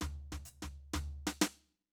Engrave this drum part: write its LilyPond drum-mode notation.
\new DrumStaff \drummode { \time 4/4 \tempo 4 = 125 \tuplet 3/2 { <sn tomfh>8 r8 <sn tomfh>8 hhp8 <sn tomfh>8 r8 <sn tomfh>8 r8 sn8 } sn4 | }